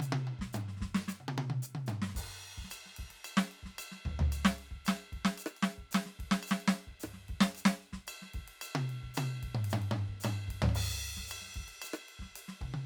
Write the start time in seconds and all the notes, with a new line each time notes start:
0.01 hi-hat pedal, high tom
0.13 high tom
0.28 high tom
0.39 kick, snare
0.53 hi-hat pedal, mid tom
0.69 snare
0.77 snare
0.81 kick, snare
0.88 kick
0.95 snare
1.08 snare, hi-hat pedal
1.21 high tom
1.29 high tom
1.38 high tom
1.50 high tom
1.63 hi-hat pedal
1.75 open hi-hat, high tom
1.87 hi-hat pedal, mid tom
2.02 snare
2.10 snare
2.15 kick, hi-hat pedal, crash
2.27 kick
2.58 kick
2.65 snare
2.71 hi-hat pedal, ride bell
2.86 snare
2.97 kick, ride
3.10 snare, ride
3.14 snare
3.25 hi-hat pedal, ride bell
3.37 snare
3.52 ride
3.63 kick, snare
3.79 hi-hat pedal, ride bell
3.92 snare
4.06 kick, floor tom
4.12 kick
4.20 floor tom
4.32 hi-hat pedal, ride bell
4.45 snare
4.59 ride
4.71 kick
4.86 snare, hi-hat pedal, ride bell
5.13 kick, ride
5.25 snare
5.38 hi-hat pedal, ride bell
5.47 cross-stick
5.57 ride bell
5.63 snare
5.78 kick
5.92 snare, hi-hat pedal, ride
6.06 snare
6.20 kick, ride
6.26 kick
6.32 snare
6.43 ride bell
6.47 hi-hat pedal
6.52 snare
6.61 ride
6.68 snare
6.87 kick
7.00 cross-stick, hi-hat pedal, ride, floor tom
7.14 snare
7.29 kick, ride
7.41 snare
7.55 hi-hat pedal, ride bell
7.66 snare
7.93 kick, snare
8.07 hi-hat pedal, ride bell
8.22 snare
8.34 kick, cross-stick, ride
8.41 kick
8.48 ride
8.62 hi-hat pedal, ride bell
8.76 high tom
8.90 ride
9.03 kick
9.15 hi-hat pedal, high tom, ride bell
9.43 kick, ride
9.55 mid tom
9.65 ride
9.70 hi-hat pedal, mid tom
9.82 ride
9.92 mid tom
10.08 kick
10.21 hi-hat pedal, ride bell
10.25 mid tom
10.48 kick, ride
10.54 kick
10.62 floor tom
10.70 floor tom
10.75 hi-hat pedal, crash
11.17 kick, snare
11.28 hi-hat pedal, ride bell
11.42 snare
11.48 snare
11.55 kick, ride
11.62 kick
11.69 ride
11.82 hi-hat pedal, ride bell
11.94 cross-stick
12.09 ride
12.20 kick, snare
12.36 hi-hat pedal, ride
12.49 snare
12.61 kick, high tom
12.68 kick
12.74 high tom